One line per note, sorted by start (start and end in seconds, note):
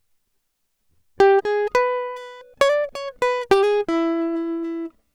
1.21 1.43 G4
1.46 1.71 G#4
1.75 2.44 B4
2.62 2.91 D5
2.96 3.13 C#5
3.23 3.48 B4
3.52 3.63 G4
3.64 3.87 G#4
3.89 4.93 E4